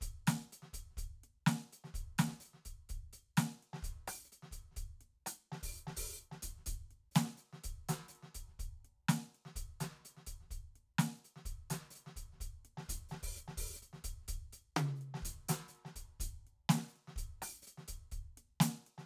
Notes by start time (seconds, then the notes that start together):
0.01 closed hi-hat, kick
0.27 closed hi-hat, snare
0.52 closed hi-hat
0.62 snare
0.73 closed hi-hat, kick
0.90 snare
0.97 closed hi-hat, kick
1.03 kick
1.24 closed hi-hat
1.46 closed hi-hat, snare
1.73 closed hi-hat
1.84 snare
1.94 closed hi-hat, kick
2.18 closed hi-hat, snare
2.27 snare
2.40 hi-hat pedal
2.45 closed hi-hat
2.53 snare
2.62 closed hi-hat, snare
2.66 kick
2.89 closed hi-hat, kick
2.96 kick
3.13 closed hi-hat
3.37 closed hi-hat, snare
3.63 closed hi-hat
3.73 snare
3.82 closed hi-hat, kick
3.88 kick
4.07 open hi-hat, cross-stick
4.24 hi-hat pedal
4.32 closed hi-hat
4.42 snare
4.51 closed hi-hat, kick
4.71 snare
4.76 closed hi-hat, kick
5.01 closed hi-hat
5.26 closed hi-hat, cross-stick
5.52 snare
5.63 open hi-hat, kick
5.77 hi-hat pedal
5.87 snare
5.97 open hi-hat, kick
6.15 hi-hat pedal
6.20 closed hi-hat
6.31 snare
6.42 closed hi-hat, kick
6.58 snare
6.66 closed hi-hat, kick
6.73 kick
6.91 closed hi-hat
7.11 closed hi-hat, hi-hat pedal
7.16 snare
7.23 snare
7.37 hi-hat pedal
7.53 snare
7.64 closed hi-hat, kick
7.89 closed hi-hat, snare
8.08 hi-hat pedal
8.15 closed hi-hat
8.23 snare
8.35 closed hi-hat, kick
8.48 snare
8.59 closed hi-hat, kick
8.85 closed hi-hat
9.09 closed hi-hat, snare
9.35 closed hi-hat
9.45 snare
9.56 closed hi-hat, kick
9.80 closed hi-hat, snare
10.05 closed hi-hat
10.17 snare
10.27 closed hi-hat, kick
10.41 snare
10.47 kick, snare
10.51 closed hi-hat, snare
10.76 closed hi-hat
10.99 closed hi-hat, snare
11.15 hi-hat pedal
11.25 closed hi-hat
11.36 snare
11.45 closed hi-hat, kick
11.70 closed hi-hat, snare
11.90 hi-hat pedal
11.95 closed hi-hat
12.06 snare
12.16 closed hi-hat, kick
12.32 snare
12.37 snare
12.40 closed hi-hat, kick, snare
12.65 closed hi-hat
12.77 snare
12.89 open hi-hat, kick
12.94 kick
13.09 snare, hi-hat pedal
13.23 open hi-hat, kick
13.28 kick
13.37 hi-hat pedal
13.48 snare
13.57 open hi-hat, kick
13.63 kick
13.75 hi-hat pedal
13.82 closed hi-hat
13.93 snare
14.04 closed hi-hat, kick
14.22 snare
14.28 closed hi-hat, kick
14.34 kick
14.53 closed hi-hat
14.76 cross-stick, hi-hat pedal, high tom
14.86 snare
14.96 hi-hat pedal
15.01 closed hi-hat
15.14 snare
15.22 closed hi-hat, kick
15.49 closed hi-hat, snare
15.68 hi-hat pedal
15.75 closed hi-hat
15.85 snare
15.95 closed hi-hat, kick
16.20 closed hi-hat, kick
16.26 kick
16.47 closed hi-hat
16.69 closed hi-hat, snare
16.75 snare
16.88 hi-hat pedal
16.96 closed hi-hat
17.07 snare
17.16 closed hi-hat, kick
17.42 open hi-hat, cross-stick
17.62 hi-hat pedal
17.67 closed hi-hat
17.78 snare
17.88 closed hi-hat, kick
18.12 closed hi-hat, kick
18.17 kick
18.22 snare
18.37 closed hi-hat
18.60 closed hi-hat, snare
18.87 closed hi-hat
18.98 snare